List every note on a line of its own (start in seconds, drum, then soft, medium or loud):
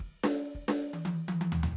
0.00 kick soft
0.00 ride medium
0.24 snare loud
0.24 ride medium
0.46 ride medium
0.55 kick soft
0.68 snare loud
0.68 ride medium
0.93 high tom loud
1.05 high tom loud
1.28 high tom loud
1.41 high tom loud
1.52 floor tom loud
1.63 floor tom loud